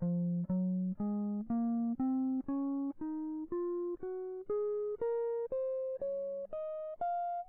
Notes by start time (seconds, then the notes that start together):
0.03 F3
0.51 F#3
1.01 G#3
1.51 A#3
2.00 C4
2.49 C#4
3.01 D#4
3.52 F4
4.03 F#4
4.50 G#4
5.02 A#4
5.52 C5
6.02 C#5
6.53 D#5
7.01 F5